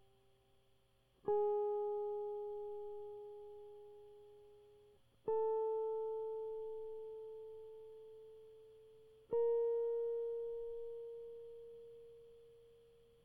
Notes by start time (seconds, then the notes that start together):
1.28 G#4
5.28 A4
9.33 A#4